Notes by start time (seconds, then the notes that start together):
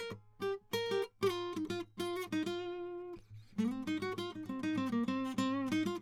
0.00 A#4
0.43 G4
0.74 A#4
0.92 G4
1.24 F4
1.58 D#4
1.71 F4
2.01 F4
2.33 D#4
2.48 F4
3.59 A3
3.72 C4
3.88 D#4
4.03 F#4
4.19 F4
4.31 D#4
4.51 C4
4.64 D#4
4.79 C4
4.88 A#3
5.09 C4
5.39 C4
5.73 D#4
5.88 F4